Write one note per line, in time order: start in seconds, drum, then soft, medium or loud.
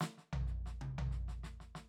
0.00 snare medium
0.00 hi-hat pedal soft
0.18 snare soft
0.33 floor tom loud
0.47 snare soft
0.66 snare soft
0.81 high tom medium
0.98 floor tom medium
1.11 snare soft
1.28 snare soft
1.43 snare soft
1.60 snare soft
1.75 snare soft